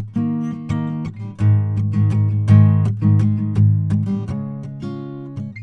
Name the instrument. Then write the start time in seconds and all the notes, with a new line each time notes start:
acoustic guitar
0.18 D#3 A#3
0.53 D#3 A#3
0.71 D#3 A#3 D#4
0.89 A#3 D#4
1.22 D3 G3
1.41 G#2 D#3
1.79 G#2 D#3
1.95 G#2 D#3
2.12 G#2 D#3 G#3
2.31 G#2 D#3
2.50 G#2 D#3 G#3
3.04 G#2 D#3
3.21 G#2 D#3 G#3
3.38 G#2 D#3
3.57 G#2 D#3 G#3
3.92 G#2 D#3
4.05 E2 A2 G3
4.09 D3
4.31 C#3 G#3
4.65 C#3 G#3
4.84 C#3 G#3 C#4 F4
5.39 G#3 C#4